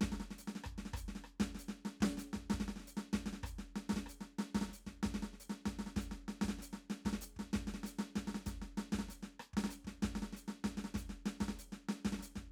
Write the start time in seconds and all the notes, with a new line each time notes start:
0.01 kick, snare
0.12 snare
0.20 snare
0.31 snare
0.38 snare, hi-hat pedal
0.48 snare
0.55 snare
0.64 kick, cross-stick
0.78 snare
0.85 snare
0.92 kick, cross-stick, snare
0.97 hi-hat pedal
1.01 kick
1.08 snare
1.15 snare
1.24 cross-stick
1.40 kick, snare
1.55 snare
1.59 hi-hat pedal
1.68 snare
1.85 snare
2.01 kick, snare
2.17 snare, hi-hat pedal
2.33 kick, snare
2.50 kick, snare
2.68 snare
2.76 snare
2.80 snare
2.87 hi-hat pedal
2.97 snare
3.13 kick, snare
3.26 snare
3.33 snare
3.43 kick, cross-stick, hi-hat pedal
3.59 snare
3.76 snare
3.89 kick, snare
3.96 snare
4.06 cross-stick, hi-hat pedal
4.21 snare
4.39 snare
4.55 kick, snare
4.61 snare
4.69 snare
4.73 hi-hat pedal
4.87 kick, snare
5.03 kick, snare
5.14 snare
5.23 snare
5.33 snare
5.40 hi-hat pedal
5.50 snare
5.66 kick, snare
5.79 snare
5.86 snare
5.96 kick
6.01 hi-hat pedal
6.11 snare
6.28 snare
6.41 kick, snare
6.48 snare
6.59 snare, hi-hat pedal
6.73 snare
6.90 snare
7.05 kick, snare
7.13 snare
7.21 cross-stick, hi-hat pedal
7.36 kick, snare
7.53 kick, snare
7.67 snare
7.74 snare
7.83 snare, hi-hat pedal
7.99 snare
8.16 kick, snare
8.27 snare
8.35 snare
8.41 snare
8.46 kick, snare, hi-hat pedal
8.62 snare
8.77 snare
8.92 kick, snare
8.99 snare
9.09 snare, hi-hat pedal
9.23 snare
9.40 cross-stick
9.53 kick, snare
9.64 snare
9.69 cross-stick, hi-hat pedal
9.85 kick, snare
10.02 kick, snare
10.15 snare
10.22 snare
10.33 snare, hi-hat pedal
10.48 snare
10.64 kick, snare
10.77 snare
10.84 snare
10.95 kick, hi-hat pedal
11.09 snare
11.26 snare
11.40 kick, snare
11.48 snare
11.57 cross-stick, hi-hat pedal
11.72 snare
11.89 snare
12.05 kick, snare
12.12 snare
12.19 snare, hi-hat pedal
12.36 kick, snare